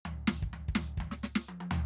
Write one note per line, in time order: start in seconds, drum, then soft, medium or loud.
0.05 floor tom medium
0.27 snare loud
0.27 floor tom medium
0.42 kick medium
0.53 floor tom medium
0.68 kick medium
0.75 snare medium
0.75 floor tom medium
0.97 kick medium
0.97 floor tom medium
1.11 snare medium
1.23 snare medium
1.35 snare medium
1.48 high tom medium
1.60 high tom medium
1.71 floor tom loud